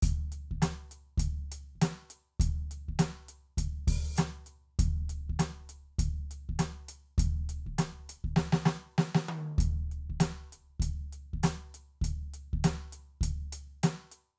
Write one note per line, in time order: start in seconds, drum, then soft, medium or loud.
0.02 closed hi-hat loud
0.02 kick loud
0.32 closed hi-hat medium
0.51 kick medium
0.62 snare loud
0.62 closed hi-hat loud
0.91 closed hi-hat medium
1.18 kick loud
1.18 closed hi-hat loud
1.52 closed hi-hat loud
1.75 kick soft
1.81 snare loud
1.81 closed hi-hat loud
2.10 closed hi-hat medium
2.40 kick loud
2.40 closed hi-hat loud
2.71 closed hi-hat medium
2.88 kick medium
2.99 snare loud
2.99 closed hi-hat loud
3.28 closed hi-hat medium
3.57 kick medium
3.57 closed hi-hat loud
3.87 kick loud
3.87 open hi-hat loud
4.16 snare loud
4.16 closed hi-hat loud
4.16 hi-hat pedal loud
4.46 closed hi-hat medium
4.79 kick loud
4.79 closed hi-hat loud
5.09 closed hi-hat medium
5.29 kick medium
5.39 snare loud
5.39 closed hi-hat loud
5.69 closed hi-hat medium
5.99 kick loud
5.99 closed hi-hat loud
6.31 closed hi-hat medium
6.49 kick medium
6.59 snare loud
6.59 closed hi-hat loud
6.88 closed hi-hat medium
7.18 kick loud
7.18 closed hi-hat loud
7.49 closed hi-hat medium
7.66 kick medium
7.78 snare loud
7.78 closed hi-hat loud
8.09 closed hi-hat medium
8.24 kick medium
8.36 snare loud
8.52 snare loud
8.65 snare loud
8.98 snare loud
9.15 snare loud
9.28 high tom loud
9.58 kick loud
9.58 closed hi-hat loud
9.91 closed hi-hat soft
10.10 kick medium
10.20 snare loud
10.20 closed hi-hat loud
10.52 closed hi-hat medium
10.80 kick loud
10.80 closed hi-hat loud
11.12 closed hi-hat medium
11.33 kick medium
11.43 closed hi-hat loud
11.43 snare loud
11.74 closed hi-hat medium
12.01 kick medium
12.01 closed hi-hat loud
12.34 closed hi-hat medium
12.53 kick medium
12.64 snare loud
12.64 closed hi-hat loud
12.92 closed hi-hat medium
13.21 kick loud
13.21 closed hi-hat loud
13.52 closed hi-hat loud
13.83 snare loud
13.83 closed hi-hat loud
14.12 closed hi-hat medium